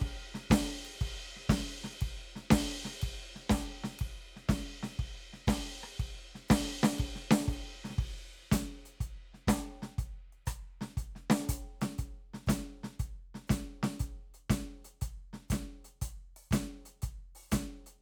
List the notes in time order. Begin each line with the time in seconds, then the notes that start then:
0.01 kick, ride
0.34 snare
0.50 kick, snare, hi-hat pedal, ride
0.85 ride
1.01 kick, ride
1.36 snare
1.49 kick, snare, hi-hat pedal, ride
1.84 snare
2.01 kick, ride
2.36 snare
2.51 kick, snare, hi-hat pedal, ride
2.85 snare
3.02 kick, ride
3.35 snare
3.50 kick, snare, hi-hat pedal, ride
3.84 snare
3.99 kick, ride
4.36 snare
4.49 kick, snare, hi-hat pedal, ride
4.83 snare
4.95 hi-hat pedal
4.99 kick, ride
5.33 snare
5.47 kick, snare, hi-hat pedal, ride
5.83 cross-stick
6.00 kick, ride
6.35 snare
6.49 kick, snare, hi-hat pedal, ride
6.72 hi-hat pedal
6.83 snare
6.96 kick, hi-hat pedal, ride
7.15 snare
7.31 snare
7.48 kick, hi-hat pedal, ride
7.84 snare
7.90 snare
7.98 kick, crash
8.34 closed hi-hat
8.52 closed hi-hat, kick, snare
8.85 closed hi-hat
9.01 closed hi-hat, kick
9.34 snare
9.48 closed hi-hat, kick, snare
9.82 snare
9.98 closed hi-hat, kick
10.33 closed hi-hat
10.46 closed hi-hat, kick, cross-stick, hi-hat pedal
10.81 snare
10.97 closed hi-hat, kick
11.15 snare
11.30 snare
11.49 closed hi-hat, kick
11.81 closed hi-hat, snare
11.98 closed hi-hat, kick
12.34 snare
12.47 closed hi-hat, kick, snare, hi-hat pedal
12.84 snare
13.00 closed hi-hat, kick
13.34 snare
13.47 closed hi-hat, kick, snare, hi-hat pedal
13.83 snare
14.00 closed hi-hat, kick
14.34 open hi-hat
14.50 closed hi-hat, kick, snare
14.85 closed hi-hat
15.01 closed hi-hat, kick
15.33 snare
15.48 closed hi-hat, kick, snare, hi-hat pedal
15.85 closed hi-hat
16.02 closed hi-hat, kick
16.36 open hi-hat
16.51 closed hi-hat, kick, snare
16.86 closed hi-hat
17.02 closed hi-hat, kick
17.35 open hi-hat
17.49 closed hi-hat, kick, snare, hi-hat pedal
17.86 closed hi-hat